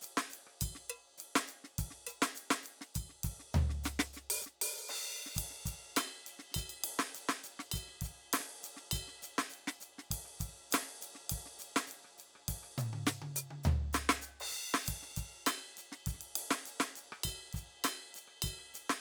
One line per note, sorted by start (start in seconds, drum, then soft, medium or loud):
0.01 hi-hat pedal medium
0.01 ride medium
0.17 snare loud
0.30 hi-hat pedal medium
0.30 ride medium
0.47 cross-stick soft
0.60 kick soft
0.60 hi-hat pedal medium
0.60 ride bell loud
0.67 kick soft
0.71 kick soft
0.71 snare soft
0.88 hi-hat pedal soft
0.88 percussion loud
1.17 hi-hat pedal medium
1.17 ride medium
1.35 snare loud
1.47 hi-hat pedal medium
1.47 ride soft
1.64 snare soft
1.78 kick medium
1.78 hi-hat pedal medium
1.78 ride medium
1.85 kick soft
1.88 kick soft
1.88 snare soft
2.06 hi-hat pedal medium
2.06 percussion loud
2.22 snare loud
2.35 hi-hat pedal medium
2.35 ride medium
2.50 snare loud
2.63 hi-hat pedal medium
2.63 ride medium
2.81 snare medium
2.94 kick soft
2.94 hi-hat pedal medium
2.94 ride bell medium
3.02 kick soft
3.05 kick soft
3.09 snare soft
3.23 kick soft
3.23 hi-hat pedal medium
3.23 ride medium
3.34 kick soft
3.39 snare soft
3.54 floor tom loud
3.54 hi-hat pedal medium
3.69 snare soft
3.84 snare medium
3.84 hi-hat pedal medium
3.99 snare loud
4.13 snare soft
4.13 hi-hat pedal medium
4.30 closed hi-hat loud
4.41 hi-hat pedal loud
4.46 snare soft
4.61 closed hi-hat loud
4.88 snare soft
4.88 crash loud
5.26 snare soft
5.34 kick soft
5.34 hi-hat pedal medium
5.34 ride loud
5.45 kick soft
5.50 snare soft
5.54 snare soft
5.58 snare soft
5.61 snare soft
5.63 kick soft
5.63 snare soft
5.63 hi-hat pedal loud
5.63 ride medium
5.74 kick soft
5.96 snare loud
5.96 hi-hat pedal medium
5.96 ride bell loud
6.06 snare soft
6.26 hi-hat pedal medium
6.26 ride medium
6.39 snare soft
6.51 snare soft
6.51 ride bell loud
6.56 kick soft
6.56 hi-hat pedal loud
6.60 snare soft
6.64 kick soft
6.69 ride bell medium
6.84 hi-hat pedal soft
6.84 ride loud
6.99 snare loud
7.15 hi-hat pedal medium
7.15 ride medium
7.29 snare loud
7.43 hi-hat pedal medium
7.43 ride soft
7.59 snare medium
7.71 kick soft
7.71 hi-hat pedal medium
7.71 ride bell loud
7.82 kick soft
7.88 snare soft
8.01 kick soft
8.01 hi-hat pedal medium
8.01 ride medium
8.10 kick soft
8.33 snare loud
8.33 hi-hat pedal medium
8.33 ride loud
8.40 snare soft
8.63 hi-hat pedal medium
8.63 ride medium
8.76 snare soft
8.91 kick soft
8.91 hi-hat pedal medium
8.91 ride bell loud
8.99 kick soft
9.01 kick soft
9.08 snare soft
9.22 hi-hat pedal medium
9.22 ride soft
9.38 snare loud
9.49 hi-hat pedal medium
9.54 ride soft
9.67 snare medium
9.80 hi-hat pedal medium
9.80 ride soft
9.98 snare soft
10.10 kick soft
10.10 hi-hat pedal medium
10.10 ride loud
10.25 cross-stick soft
10.39 kick soft
10.39 hi-hat pedal medium
10.39 ride medium
10.49 kick soft
10.71 snare loud
10.71 hi-hat pedal medium
10.71 ride loud
10.82 snare soft
11.01 hi-hat pedal medium
11.01 ride medium
11.15 snare soft
11.29 kick soft
11.29 hi-hat pedal medium
11.29 ride loud
11.46 snare soft
11.59 hi-hat pedal medium
11.59 ride soft
11.76 snare loud
11.87 hi-hat pedal medium
11.91 ride medium
12.04 cross-stick soft
12.18 hi-hat pedal medium
12.18 ride soft
12.35 cross-stick soft
12.48 kick soft
12.48 hi-hat pedal medium
12.48 ride loud
12.54 kick soft
12.57 kick soft
12.63 cross-stick soft
12.78 hi-hat pedal medium
12.78 mid tom medium
12.93 high tom medium
13.06 snare loud
13.06 hi-hat pedal medium
13.22 high tom medium
13.36 closed hi-hat loud
13.36 hi-hat pedal medium
13.50 high tom medium
13.63 floor tom loud
13.63 hi-hat pedal medium
13.93 snare loud
13.93 hi-hat pedal loud
14.09 snare loud
14.21 hi-hat pedal medium
14.40 crash loud
14.51 hi-hat pedal medium
14.74 snare loud
14.85 kick soft
14.85 hi-hat pedal loud
14.85 ride loud
15.02 snare soft
15.11 snare soft
15.16 kick soft
15.16 hi-hat pedal medium
15.16 ride medium
15.25 kick soft
15.46 snare loud
15.46 hi-hat pedal medium
15.46 ride bell loud
15.57 snare soft
15.77 hi-hat pedal medium
15.77 ride soft
15.92 snare medium
16.06 kick soft
16.06 snare soft
16.06 hi-hat pedal medium
16.06 ride medium
16.13 kick soft
16.13 snare soft
16.16 kick soft
16.16 snare soft
16.21 snare soft
16.21 ride medium
16.35 hi-hat pedal medium
16.35 ride loud
16.50 snare loud
16.65 hi-hat pedal medium
16.65 ride medium
16.80 snare loud
16.95 hi-hat pedal medium
16.95 ride soft
17.12 cross-stick medium
17.23 kick soft
17.23 hi-hat pedal medium
17.23 ride bell loud
17.53 kick soft
17.53 hi-hat pedal medium
17.53 ride soft
17.63 kick soft
17.84 snare medium
17.84 hi-hat pedal medium
17.84 ride bell loud
17.95 snare soft
18.14 hi-hat pedal medium
18.14 ride soft
18.27 cross-stick soft
18.42 kick soft
18.42 hi-hat pedal medium
18.42 ride bell loud
18.50 kick soft
18.59 cross-stick soft
18.74 hi-hat pedal medium
18.74 ride medium
18.89 snare loud